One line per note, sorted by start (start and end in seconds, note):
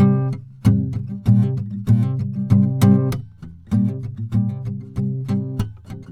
0.01 0.43 C3
0.01 0.33 G3
0.65 1.61 F2
0.65 1.19 C3
0.65 0.91 G3
0.94 1.04 G#3
1.08 1.18 G3
1.26 1.44 A#2
1.26 1.57 G3
1.44 1.66 C3
1.58 1.71 G3
1.72 1.82 G3
1.88 2.04 A#2
1.88 2.18 G3
2.04 2.19 C3
2.20 2.37 C3
2.20 2.34 G3
2.34 2.51 C3
2.34 2.48 G3
2.51 2.82 C3
2.51 2.82 G3
2.82 3.13 C3
2.82 3.13 G3
3.72 3.90 A#2
3.72 4.04 G3
3.90 4.01 C3
4.04 4.18 C3
4.19 4.33 A#2
4.33 4.45 A#2
4.33 4.66 G3
4.50 4.64 C3
4.66 4.96 C3
4.98 5.29 C3
5.29 5.61 C3
5.29 5.71 G3
5.91 6.04 C3